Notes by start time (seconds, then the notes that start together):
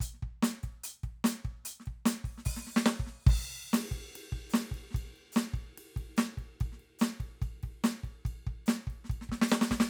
0.01 closed hi-hat, kick
0.14 snare
0.23 kick, closed hi-hat
0.43 closed hi-hat, snare
0.64 kick, closed hi-hat
0.84 closed hi-hat
1.04 kick, closed hi-hat
1.25 closed hi-hat, snare
1.45 kick, closed hi-hat
1.65 closed hi-hat, snare
1.81 snare
1.86 kick, closed hi-hat
2.06 closed hi-hat, snare
2.25 kick, open hi-hat
2.38 snare
2.46 open hi-hat, kick
2.57 snare
2.67 snare
2.77 snare
2.86 snare
3.00 kick
3.07 snare
3.27 kick, crash
3.74 snare, hi-hat pedal, ride
3.92 kick, ride
4.16 ride
4.33 kick
4.50 snare, hi-hat pedal
4.56 ride
4.72 kick, ride
4.91 kick, snare
4.97 ride bell
5.05 snare
5.09 snare
5.17 ride
5.33 snare, hi-hat pedal
5.38 ride bell
5.54 kick, ride
5.78 ride
5.97 kick, snare, ride
6.17 snare, hi-hat pedal, ride bell
6.38 kick, ride
6.61 kick, ride bell
6.73 snare
6.80 ride
7.00 snare, hi-hat pedal, ride bell
7.21 kick, ride
7.42 kick, ride bell
7.64 kick, ride
7.84 snare, hi-hat pedal, ride bell
8.04 kick, ride
8.26 kick, ride bell
8.47 kick, ride
8.67 snare, hi-hat pedal, ride bell
8.88 kick, ride
9.05 snare
9.10 kick, ride bell
9.22 snare
9.30 kick, snare
9.42 snare
9.48 snare, hi-hat pedal
9.62 snare
9.71 kick, snare
9.81 snare